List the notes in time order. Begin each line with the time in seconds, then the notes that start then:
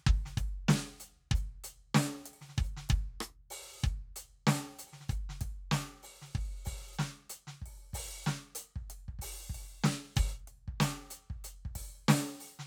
0.01 snare
0.07 kick, open hi-hat
0.26 snare, hi-hat pedal
0.38 kick, closed hi-hat
0.69 snare
1.00 open hi-hat
1.31 kick, hi-hat pedal
1.64 closed hi-hat
1.95 snare
2.26 open hi-hat
2.34 open hi-hat
2.41 snare
2.49 snare
2.57 open hi-hat, kick
2.64 hi-hat pedal
2.77 snare
2.89 kick, closed hi-hat
3.21 cross-stick
3.51 open hi-hat
3.84 kick, hi-hat pedal
4.16 closed hi-hat
4.47 snare
4.79 open hi-hat
4.87 open hi-hat
4.93 snare
5.01 snare
5.09 open hi-hat, kick, hi-hat pedal
5.30 snare
5.41 kick, closed hi-hat
5.72 snare
6.03 open hi-hat
6.22 snare
6.35 kick
6.66 open hi-hat, kick
6.94 hi-hat pedal
6.99 snare
7.30 closed hi-hat
7.48 snare
7.62 kick
7.66 open hi-hat
7.94 open hi-hat, kick
8.06 kick
8.23 snare, hi-hat pedal
8.55 closed hi-hat
8.76 kick
8.90 closed hi-hat
9.09 kick
9.19 open hi-hat, kick
9.50 kick
9.55 open hi-hat
9.84 snare
10.16 open hi-hat, kick
10.48 closed hi-hat
10.68 kick
10.81 closed hi-hat, snare
11.11 closed hi-hat
11.30 kick
11.44 closed hi-hat
11.66 kick
11.76 kick, open hi-hat
12.09 open hi-hat, snare
12.40 open hi-hat
12.59 snare